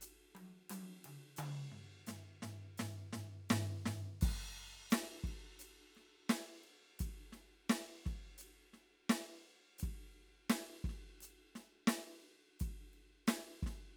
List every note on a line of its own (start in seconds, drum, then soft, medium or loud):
0.01 hi-hat pedal medium
0.01 ride soft
0.35 high tom soft
0.35 ride soft
0.70 hi-hat pedal medium
0.70 high tom medium
0.70 ride medium
1.04 mid tom soft
1.04 ride soft
1.36 hi-hat pedal medium
1.36 mid tom medium
1.36 ride soft
1.72 floor tom soft
2.07 snare soft
2.07 floor tom soft
2.07 hi-hat pedal medium
2.42 snare soft
2.42 floor tom medium
2.77 snare medium
2.77 floor tom medium
2.77 hi-hat pedal medium
3.13 snare medium
3.13 floor tom medium
3.49 snare loud
3.49 floor tom medium
3.49 hi-hat pedal medium
3.85 snare medium
3.85 floor tom medium
4.21 kick medium
4.21 hi-hat pedal medium
4.21 crash medium
4.90 snare loud
4.90 hi-hat pedal medium
4.90 ride medium
5.24 kick soft
5.24 ride soft
5.59 hi-hat pedal medium
5.59 ride soft
5.95 snare soft
5.95 ride soft
6.29 snare loud
6.29 hi-hat pedal medium
6.29 ride soft
6.64 ride soft
6.99 kick soft
6.99 hi-hat pedal medium
6.99 ride medium
7.32 snare soft
7.32 ride soft
7.69 snare loud
7.69 hi-hat pedal medium
7.69 ride soft
8.05 kick soft
8.05 snare soft
8.05 ride soft
8.38 hi-hat pedal medium
8.38 ride soft
8.73 snare soft
8.73 ride soft
9.09 snare loud
9.09 hi-hat pedal medium
9.09 ride soft
9.44 ride soft
9.78 hi-hat pedal medium
9.78 ride medium
9.83 kick soft
10.12 ride soft
10.50 snare loud
10.50 hi-hat pedal medium
10.50 ride medium
10.84 kick soft
10.84 ride soft
10.89 snare soft
11.21 hi-hat pedal medium
11.21 ride soft
11.55 snare soft
11.55 ride soft
11.87 snare loud
11.87 hi-hat pedal medium
11.87 ride medium
12.59 kick soft
12.59 hi-hat pedal medium
12.59 ride soft
12.93 ride soft
13.27 snare loud
13.27 hi-hat pedal medium
13.27 ride medium
13.63 kick soft
13.63 snare soft
13.63 ride soft